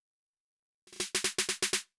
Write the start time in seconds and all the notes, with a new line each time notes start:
0.87 snare
0.93 snare
0.96 snare
1.00 snare
1.15 snare
1.24 snare
1.39 snare
1.49 snare
1.62 snare
1.73 snare